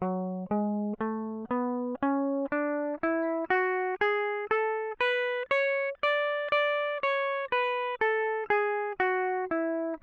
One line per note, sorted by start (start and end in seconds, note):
0.03 0.50 F#3
0.52 0.98 G#3
1.01 1.49 A3
1.51 1.98 B3
2.03 2.50 C#4
2.52 2.99 D4
3.04 3.47 E4
3.51 3.98 F#4
4.02 4.49 G#4
4.51 4.95 A4
5.01 5.46 B4
5.51 5.96 C#5
6.04 6.52 D5
6.52 7.01 D5
7.04 7.49 C#5
7.53 7.99 B4
8.02 8.48 A4
8.51 8.96 G#4
9.00 9.50 F#4
9.52 9.98 E4